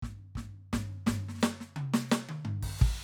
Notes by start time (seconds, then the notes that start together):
0.02 kick, snare, floor tom
0.35 kick, snare, floor tom
0.73 kick, snare, floor tom
1.07 kick, snare, floor tom
1.29 snare
1.34 snare
1.38 snare, hi-hat pedal
1.43 snare
1.60 snare
1.76 mid tom
1.94 snare
2.09 snare, hi-hat pedal
2.29 high tom
2.45 floor tom
2.63 kick, crash
2.79 kick, crash